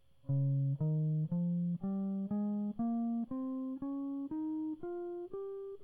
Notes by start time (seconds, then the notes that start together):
0.30 C#3
0.81 D#3
1.32 F3
1.84 G3
2.31 G#3
2.79 A#3
3.31 C4
3.82 C#4
4.31 D#4
4.83 F4
5.33 G4